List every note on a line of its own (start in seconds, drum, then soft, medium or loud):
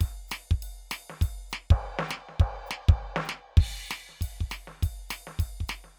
0.01 kick medium
0.01 ride medium
0.28 snare loud
0.28 hi-hat pedal medium
0.28 ride medium
0.51 kick medium
0.63 ride medium
0.91 snare loud
0.91 hi-hat pedal medium
0.91 ride medium
1.10 snare soft
1.22 kick medium
1.22 ride medium
1.50 snare loud
1.50 hi-hat pedal medium
1.71 kick loud
1.71 crash loud
1.99 snare loud
2.09 snare loud
2.09 hi-hat pedal medium
2.29 snare soft
2.40 kick loud
2.40 crash loud
2.67 hi-hat pedal medium
2.71 snare loud
2.89 kick loud
2.89 crash medium
3.16 snare loud
3.25 hi-hat pedal medium
3.29 snare loud
3.57 kick loud
3.57 crash loud
3.86 hi-hat pedal medium
3.91 snare loud
3.91 ride medium
4.09 snare soft
4.21 kick medium
4.21 ride medium
4.41 kick medium
4.50 snare loud
4.50 hi-hat pedal medium
4.50 ride medium
4.68 snare soft
4.83 kick medium
4.83 ride medium
5.09 snare loud
5.09 hi-hat pedal medium
5.09 ride medium
5.27 snare soft
5.39 kick medium
5.39 ride medium
5.61 kick medium
5.68 snare loud
5.68 hi-hat pedal medium
5.68 ride medium
5.84 snare soft